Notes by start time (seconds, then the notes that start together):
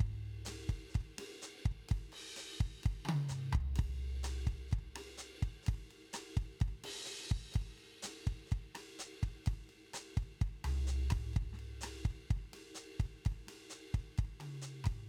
0.01 kick
0.07 kick
0.12 snare
0.46 snare, hi-hat pedal, ride
0.70 kick, ride
0.90 hi-hat pedal
0.95 kick, ride
1.01 kick
1.19 snare, ride
1.43 hi-hat pedal
1.66 kick
1.72 kick
1.89 kick, ride
1.98 kick
2.13 crash
2.37 hi-hat pedal, ride
2.61 kick, ride
2.66 kick
2.84 kick, ride
2.92 kick
3.06 high tom
3.09 high tom
3.29 hi-hat pedal, mid tom
3.53 kick, floor tom
3.61 kick
3.76 kick, cross-stick, snare, ride
4.07 snare
4.24 cross-stick, snare, hi-hat pedal, ride
4.47 kick, ride
4.53 kick
4.69 hi-hat pedal, ride
4.73 kick
4.79 kick
4.96 cross-stick, snare, ride
5.18 hi-hat pedal, ride
5.43 kick, ride
5.48 kick
5.63 snare, hi-hat pedal, ride
5.69 kick
5.75 kick
5.91 ride
6.03 snare
6.14 cross-stick, snare, hi-hat pedal, ride
6.37 kick, ride
6.43 kick
6.61 kick, ride
6.68 kick
6.85 ride, crash
7.06 hi-hat pedal, ride
7.31 kick, ride
7.37 kick, snare
7.52 kick, hi-hat pedal, ride
7.62 kick
7.79 ride
8.03 snare, hi-hat pedal, ride
8.27 kick, ride
8.33 kick
8.47 hi-hat pedal
8.52 kick, ride
8.58 kick
8.75 cross-stick, snare, ride
9.00 hi-hat pedal, ride
9.23 kick, ride
9.29 kick
9.43 snare, hi-hat pedal, ride
9.48 kick
9.54 kick
9.70 ride
9.94 cross-stick, snare, hi-hat pedal, ride
10.18 kick, ride
10.23 kick
10.42 kick, ride
10.48 kick
10.65 floor tom, ride
10.88 hi-hat pedal
11.11 kick, mid tom, ride
11.18 kick
11.34 kick, ride
11.43 kick
11.54 snare
11.60 ride
11.82 cross-stick, snare, hi-hat pedal, ride
12.06 kick, ride
12.11 kick
12.31 kick, ride
12.37 kick
12.53 snare, ride
12.75 hi-hat pedal, ride
13.00 kick, ride
13.06 kick
13.26 kick, cross-stick, ride
13.32 kick
13.48 snare, ride
13.71 hi-hat pedal, ride
13.95 kick, ride
14.00 kick
14.19 kick, ride
14.25 kick
14.41 high tom, ride
14.62 hi-hat pedal, ride
14.85 kick, mid tom, ride
14.92 kick